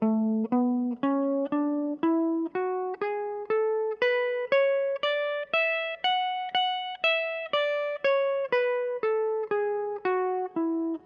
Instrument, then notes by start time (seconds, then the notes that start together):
electric guitar
0.03 A3
0.53 B3
1.04 C#4
1.53 D4
2.03 E4
2.55 F#4
3.02 G#4
3.50 A4
4.02 B4
4.53 C#5
5.04 D5
5.54 E5
6.04 F#5
6.55 F#5
7.04 E5
7.54 D5
8.05 C#5
8.53 B4
9.03 A4
9.51 G#4
10.06 F#4
10.57 E4